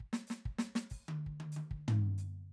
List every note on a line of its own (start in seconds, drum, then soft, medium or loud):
0.00 kick soft
0.13 snare medium
0.27 snare medium
0.27 hi-hat pedal soft
0.46 kick soft
0.59 snare medium
0.75 snare medium
0.90 kick soft
0.90 hi-hat pedal soft
1.08 high tom medium
1.26 kick soft
1.40 high tom medium
1.52 hi-hat pedal soft
1.56 high tom medium
1.71 kick soft
1.88 floor tom loud
2.18 hi-hat pedal soft